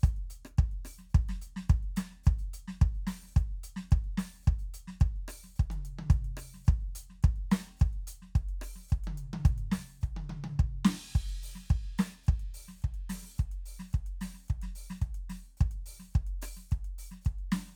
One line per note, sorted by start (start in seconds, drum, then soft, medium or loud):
0.01 closed hi-hat soft
0.01 kick loud
0.01 hi-hat pedal soft
0.17 closed hi-hat soft
0.25 kick soft
0.30 closed hi-hat medium
0.45 cross-stick medium
0.58 kick loud
0.58 closed hi-hat soft
0.72 closed hi-hat soft
0.85 open hi-hat medium
0.85 cross-stick medium
0.99 snare soft
1.10 hi-hat pedal soft
1.15 kick loud
1.15 closed hi-hat soft
1.29 snare medium
1.29 closed hi-hat soft
1.42 closed hi-hat medium
1.56 snare medium
1.70 kick loud
1.70 closed hi-hat soft
1.83 closed hi-hat soft
1.97 open hi-hat medium
1.97 snare loud
2.11 snare soft
2.24 kick loud
2.24 closed hi-hat soft
2.24 hi-hat pedal soft
2.30 snare soft
2.39 closed hi-hat soft
2.54 closed hi-hat medium
2.68 snare medium
2.81 kick loud
2.81 closed hi-hat soft
2.94 closed hi-hat soft
3.07 open hi-hat medium
3.07 snare medium
3.23 snare soft
3.32 hi-hat pedal soft
3.36 kick loud
3.36 snare soft
3.36 closed hi-hat soft
3.51 closed hi-hat soft
3.64 closed hi-hat medium
3.77 snare medium
3.91 kick loud
3.91 closed hi-hat soft
4.04 closed hi-hat soft
4.18 open hi-hat medium
4.18 snare loud
4.34 snare soft
4.43 hi-hat pedal soft
4.47 kick loud
4.47 snare soft
4.47 closed hi-hat soft
4.59 closed hi-hat soft
4.74 closed hi-hat medium
4.88 snare medium
5.01 kick loud
5.01 closed hi-hat soft
5.16 closed hi-hat soft
5.28 open hi-hat medium
5.28 cross-stick medium
5.44 snare soft
5.56 kick medium
5.56 hi-hat pedal soft
5.56 open hi-hat soft
5.70 closed hi-hat soft
5.70 high tom medium
5.85 closed hi-hat medium
5.99 high tom loud
6.10 kick loud
6.10 closed hi-hat soft
6.25 closed hi-hat soft
6.37 open hi-hat medium
6.37 cross-stick medium
6.54 snare soft
6.65 kick loud
6.65 closed hi-hat soft
6.65 hi-hat pedal soft
6.74 snare soft
6.81 closed hi-hat soft
6.95 closed hi-hat loud
7.10 snare soft
7.23 kick loud
7.23 closed hi-hat soft
7.36 closed hi-hat soft
7.52 open hi-hat medium
7.52 snare loud
7.67 snare soft
7.73 snare soft
7.77 snare soft
7.77 closed hi-hat soft
7.77 hi-hat pedal soft
7.81 kick loud
7.81 snare soft
7.93 closed hi-hat soft
8.07 closed hi-hat medium
8.22 snare soft
8.36 kick loud
8.36 closed hi-hat soft
8.49 closed hi-hat soft
8.62 open hi-hat medium
8.62 cross-stick medium
8.76 snare soft
8.89 kick medium
8.89 closed hi-hat soft
8.89 hi-hat pedal soft
9.04 closed hi-hat soft
9.04 high tom loud
9.18 closed hi-hat medium
9.33 high tom loud
9.45 kick loud
9.45 closed hi-hat medium
9.58 closed hi-hat soft
9.72 open hi-hat medium
9.72 snare loud
9.89 snare soft
10.01 kick medium
10.01 hi-hat pedal soft
10.17 high tom loud
10.30 high tom loud
10.44 high tom loud
10.59 kick loud
10.85 snare loud
10.85 crash medium
11.15 kick medium
11.15 closed hi-hat soft
11.29 closed hi-hat soft
11.43 open hi-hat medium
11.55 snare soft
11.65 hi-hat pedal soft
11.70 kick loud
11.70 closed hi-hat soft
11.84 closed hi-hat soft
11.98 open hi-hat medium
11.98 snare loud
12.13 snare soft
12.23 closed hi-hat soft
12.23 hi-hat pedal soft
12.28 kick loud
12.39 snare soft
12.39 closed hi-hat soft
12.44 snare soft
12.54 open hi-hat medium
12.68 snare soft
12.78 hi-hat pedal soft
12.82 kick medium
12.82 closed hi-hat soft
12.94 closed hi-hat soft
13.10 open hi-hat medium
13.10 snare medium
13.23 snare soft
13.36 kick medium
13.36 closed hi-hat medium
13.36 hi-hat pedal soft
13.52 closed hi-hat soft
13.66 open hi-hat medium
13.80 snare medium
13.90 closed hi-hat soft
13.90 hi-hat pedal soft
13.94 kick medium
14.06 closed hi-hat soft
14.21 open hi-hat medium
14.21 snare medium
14.26 kick soft
14.34 snare soft
14.44 hi-hat pedal soft
14.49 kick medium
14.49 closed hi-hat soft
14.62 snare soft
14.62 closed hi-hat soft
14.75 open hi-hat medium
14.90 snare medium
14.96 hi-hat pedal soft
15.02 kick medium
15.02 closed hi-hat soft
15.15 closed hi-hat soft
15.30 snare medium
15.30 open hi-hat medium
15.57 kick loud
15.57 hi-hat pedal soft
15.57 open hi-hat soft
15.71 closed hi-hat soft
15.86 open hi-hat medium
16.00 snare soft
16.11 closed hi-hat soft
16.11 hi-hat pedal soft
16.15 kick loud
16.27 closed hi-hat soft
16.42 open hi-hat loud
16.42 cross-stick medium
16.57 snare soft
16.69 kick medium
16.69 closed hi-hat soft
16.69 hi-hat pedal soft
16.85 closed hi-hat soft
16.99 open hi-hat medium
17.11 snare soft
17.22 closed hi-hat medium
17.22 hi-hat pedal soft
17.26 kick medium
17.39 closed hi-hat soft
17.52 open hi-hat medium
17.52 snare loud
17.67 snare soft